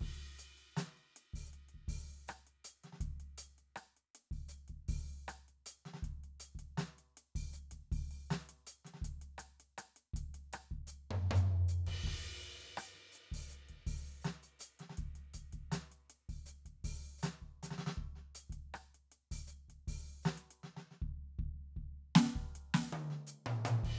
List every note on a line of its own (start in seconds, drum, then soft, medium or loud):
0.01 kick soft
0.01 crash soft
0.39 closed hi-hat medium
0.58 closed hi-hat soft
0.77 closed hi-hat medium
0.77 snare medium
0.98 closed hi-hat soft
1.17 closed hi-hat soft
1.34 open hi-hat medium
1.34 kick soft
1.48 hi-hat pedal soft
1.54 closed hi-hat soft
1.69 closed hi-hat soft
1.75 kick soft
1.89 open hi-hat medium
1.89 kick soft
2.28 cross-stick medium
2.28 closed hi-hat soft
2.28 hi-hat pedal soft
2.47 closed hi-hat soft
2.65 closed hi-hat medium
2.84 snare soft
2.84 closed hi-hat soft
2.93 snare soft
3.01 kick medium
3.01 closed hi-hat soft
3.20 closed hi-hat soft
3.38 closed hi-hat medium
3.59 closed hi-hat soft
3.76 cross-stick medium
3.76 closed hi-hat soft
3.97 closed hi-hat soft
4.15 closed hi-hat soft
4.32 kick soft
4.32 open hi-hat soft
4.49 hi-hat pedal medium
4.68 kick soft
4.68 closed hi-hat soft
4.89 open hi-hat medium
4.89 kick medium
5.29 cross-stick medium
5.29 closed hi-hat soft
5.29 hi-hat pedal soft
5.49 closed hi-hat soft
5.67 closed hi-hat medium
5.86 snare soft
5.86 closed hi-hat soft
5.94 snare soft
6.03 kick soft
6.03 closed hi-hat soft
6.24 closed hi-hat soft
6.40 closed hi-hat medium
6.56 kick soft
6.56 closed hi-hat soft
6.78 snare medium
6.78 closed hi-hat soft
6.99 closed hi-hat soft
7.18 closed hi-hat soft
7.36 kick soft
7.36 open hi-hat medium
7.54 hi-hat pedal soft
7.54 open hi-hat soft
7.72 kick soft
7.72 closed hi-hat soft
7.92 kick medium
7.92 open hi-hat soft
8.11 open hi-hat soft
8.31 snare medium
8.31 hi-hat pedal soft
8.31 open hi-hat medium
8.50 closed hi-hat soft
8.67 closed hi-hat medium
8.85 snare soft
8.85 closed hi-hat soft
8.94 snare soft
9.02 kick soft
9.02 closed hi-hat medium
9.22 closed hi-hat soft
9.39 cross-stick medium
9.39 closed hi-hat medium
9.60 closed hi-hat soft
9.78 cross-stick medium
9.78 closed hi-hat medium
9.97 closed hi-hat soft
10.14 kick soft
10.14 closed hi-hat medium
10.35 closed hi-hat soft
10.53 cross-stick medium
10.53 closed hi-hat medium
10.72 kick soft
10.88 hi-hat pedal medium
11.11 floor tom loud
11.31 floor tom loud
11.36 hi-hat pedal medium
11.69 hi-hat pedal medium
11.87 kick soft
11.87 ride medium
12.04 kick medium
12.04 crash medium
12.44 closed hi-hat soft
12.61 closed hi-hat soft
12.78 open hi-hat medium
12.78 cross-stick medium
12.95 snare soft
12.95 open hi-hat soft
13.12 closed hi-hat soft
13.12 hi-hat pedal soft
13.32 open hi-hat medium
13.32 kick soft
13.50 closed hi-hat soft
13.50 hi-hat pedal medium
13.69 kick soft
13.69 closed hi-hat soft
13.87 open hi-hat medium
13.87 kick medium
14.05 open hi-hat soft
14.22 snare medium
14.22 closed hi-hat soft
14.22 hi-hat pedal soft
14.43 closed hi-hat soft
14.60 closed hi-hat medium
14.60 hi-hat pedal soft
14.80 snare soft
14.80 closed hi-hat soft
14.90 snare soft
14.98 kick soft
14.98 closed hi-hat soft
15.16 snare soft
15.16 closed hi-hat soft
15.34 closed hi-hat medium
15.34 kick soft
15.53 kick soft
15.53 closed hi-hat soft
15.72 closed hi-hat medium
15.72 snare medium
15.92 closed hi-hat soft
16.10 closed hi-hat soft
16.30 kick soft
16.30 open hi-hat soft
16.46 closed hi-hat soft
16.46 hi-hat pedal medium
16.66 kick soft
16.66 closed hi-hat soft
16.85 open hi-hat medium
16.85 kick soft
17.19 hi-hat pedal soft
17.23 closed hi-hat medium
17.23 snare medium
17.42 kick soft
17.63 snare soft
17.63 hi-hat pedal medium
17.71 snare soft
17.79 snare soft
17.87 snare medium
17.98 kick soft
18.16 snare soft
18.35 closed hi-hat medium
18.50 kick soft
18.50 closed hi-hat soft
18.75 cross-stick medium
18.95 closed hi-hat soft
19.12 closed hi-hat soft
19.32 open hi-hat medium
19.32 kick soft
19.48 hi-hat pedal medium
19.69 kick soft
19.69 closed hi-hat soft
19.88 open hi-hat medium
19.88 kick soft
20.23 snare medium
20.23 hi-hat pedal soft
20.38 closed hi-hat soft
20.51 closed hi-hat soft
20.64 snare soft
20.77 snare soft
20.91 snare soft
21.02 kick medium
21.39 kick medium
21.77 kick soft
22.16 snare loud
22.23 snare soft
22.36 kick soft
22.56 closed hi-hat soft
22.75 snare medium
22.93 high tom loud
23.11 snare soft
23.28 hi-hat pedal medium
23.47 mid tom loud
23.66 hi-hat pedal medium
23.66 mid tom loud
23.84 kick medium
23.84 ride medium